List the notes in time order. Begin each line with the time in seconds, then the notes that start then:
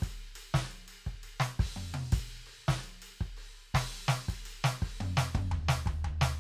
0.01 kick, hi-hat pedal, crash
0.36 crash
0.55 kick, snare, hi-hat pedal
0.72 crash
0.89 crash
1.06 kick, hi-hat pedal
1.24 crash
1.41 snare
1.60 kick, crash
1.77 mid tom
1.95 high tom
2.13 kick, hi-hat pedal, crash
2.47 crash
2.68 kick, snare, hi-hat pedal
2.84 crash
3.03 crash
3.22 kick
3.38 crash
3.75 kick, snare, crash
4.09 snare, crash
4.29 kick, hi-hat pedal, crash
4.46 crash
4.65 snare
4.83 kick, crash
5.01 mid tom
5.18 snare
5.36 kick, mid tom
5.52 floor tom
5.69 snare
5.87 kick, floor tom
6.05 kick, floor tom
6.22 snare